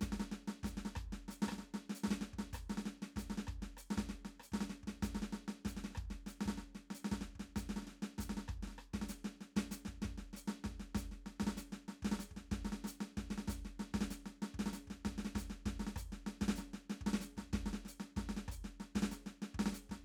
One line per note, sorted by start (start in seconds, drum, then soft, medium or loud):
0.01 kick soft
0.01 snare soft
0.01 hi-hat pedal soft
0.10 kick soft
0.10 snare soft
0.19 snare soft
0.31 snare soft
0.47 snare soft
0.63 kick soft
0.63 snare soft
0.63 hi-hat pedal soft
0.77 snare soft
0.85 snare soft
0.95 kick soft
0.95 cross-stick medium
1.03 kick soft
1.12 snare soft
1.28 snare soft
1.28 hi-hat pedal medium
1.42 snare medium
1.46 kick soft
1.46 cross-stick medium
1.52 snare soft
1.58 snare soft
1.74 snare soft
1.89 snare soft
1.95 hi-hat pedal medium
2.03 kick soft
2.03 snare medium
2.10 snare medium
2.21 snare soft
2.33 kick soft
2.38 snare soft
2.53 kick soft
2.53 cross-stick medium
2.53 hi-hat pedal medium
2.69 snare soft
2.77 snare soft
2.85 snare soft
3.02 snare soft
3.16 kick soft
3.16 snare soft
3.16 hi-hat pedal medium
3.30 snare soft
3.37 snare soft
3.47 kick soft
3.47 cross-stick soft
3.62 snare soft
3.77 cross-stick soft
3.77 hi-hat pedal medium
3.90 snare medium
3.97 kick soft
3.97 snare medium
4.09 snare soft
4.25 snare soft
4.39 cross-stick soft
4.39 hi-hat pedal soft
4.52 kick soft
4.52 snare medium
4.60 snare soft
4.69 snare soft
4.83 kick soft
4.87 snare soft
5.02 kick soft
5.02 snare medium
5.02 hi-hat pedal medium
5.14 snare soft
5.22 snare soft
5.32 snare soft
5.48 snare soft
5.65 kick soft
5.65 snare soft
5.65 hi-hat pedal soft
5.76 snare soft
5.84 snare soft
5.90 snare soft
5.95 kick soft
5.95 cross-stick medium
6.05 kick soft
6.10 snare soft
6.26 snare soft
6.26 hi-hat pedal soft
6.40 snare soft
6.45 kick soft
6.45 snare medium
6.57 snare soft
6.75 snare soft
6.90 snare soft
6.95 hi-hat pedal medium
7.04 snare soft
7.11 kick soft
7.11 snare medium
7.21 snare soft
7.35 kick soft
7.39 snare soft
7.56 kick soft
7.56 snare soft
7.56 hi-hat pedal medium
7.69 snare soft
7.76 snare soft
7.82 snare soft
7.87 snare soft
8.02 snare soft
8.18 kick soft
8.18 snare soft
8.18 hi-hat pedal medium
8.29 snare soft
8.37 snare soft
8.48 kick soft
8.48 cross-stick soft
8.57 kick soft
8.62 snare soft
8.67 snare soft
8.72 snare soft
8.78 cross-stick soft
8.93 kick soft
8.93 snare soft
9.01 snare soft
9.08 snare soft
9.08 hi-hat pedal medium
9.24 snare soft
9.40 snare soft
9.56 kick soft
9.56 snare medium
9.71 snare soft
9.71 hi-hat pedal medium
9.85 kick soft
9.85 snare soft
10.02 kick soft
10.02 snare soft
10.17 snare soft
10.33 snare soft
10.33 hi-hat pedal medium
10.47 snare medium
10.64 kick soft
10.64 snare soft
10.79 snare soft
10.95 kick soft
10.95 snare medium
10.95 hi-hat pedal medium
11.11 snare soft
11.26 snare soft
11.40 kick soft
11.40 snare medium
11.46 snare medium
11.57 snare soft
11.57 hi-hat pedal medium
11.72 snare soft
11.88 snare soft
12.02 kick soft
12.02 snare medium
12.11 snare medium
12.19 snare soft
12.19 hi-hat pedal medium
12.31 kick soft
12.36 snare soft
12.51 kick soft
12.51 snare soft
12.64 snare soft
12.72 snare soft
12.84 snare soft
12.84 hi-hat pedal medium
13.00 snare soft
13.17 kick soft
13.17 snare soft
13.30 snare soft
13.38 snare soft
13.47 kick soft
13.47 snare soft
13.47 hi-hat pedal medium
13.65 snare soft
13.79 snare soft
13.94 kick soft
13.94 snare medium
14.01 snare medium
14.10 snare soft
14.10 hi-hat pedal medium
14.26 snare soft
14.42 snare soft
14.54 kick soft
14.59 snare medium
14.66 snare medium
14.73 snare soft
14.73 hi-hat pedal medium
14.87 kick soft
14.87 snare soft
15.05 kick soft
15.05 snare medium
15.18 snare soft
15.24 snare soft
15.35 kick soft
15.35 snare soft
15.35 hi-hat pedal medium
15.50 snare soft
15.65 kick soft
15.65 snare soft
15.79 snare soft
15.86 snare soft
15.96 kick soft
15.96 cross-stick medium
15.96 hi-hat pedal medium
16.12 snare soft
16.26 snare soft
16.41 kick soft
16.41 snare medium
16.48 snare medium
16.56 snare soft
16.56 hi-hat pedal medium
16.73 snare soft
16.89 snare soft
17.01 kick soft
17.06 snare medium
17.13 snare medium
17.20 snare soft
17.20 hi-hat pedal medium
17.37 kick soft
17.37 snare soft
17.53 kick soft
17.53 snare medium
17.66 snare soft
17.73 snare soft
17.85 snare soft
17.85 hi-hat pedal medium
18.00 snare soft
18.16 kick soft
18.16 snare soft
18.29 snare soft
18.36 snare soft
18.48 kick soft
18.48 cross-stick soft
18.48 hi-hat pedal medium
18.64 snare soft
18.80 snare soft
18.95 kick soft
18.95 snare medium
19.02 snare medium
19.11 snare soft
19.11 hi-hat pedal medium
19.26 snare soft
19.42 snare soft
19.54 kick soft
19.59 snare medium
19.66 snare medium
19.72 snare soft
19.72 hi-hat pedal medium
19.89 kick soft
19.89 snare soft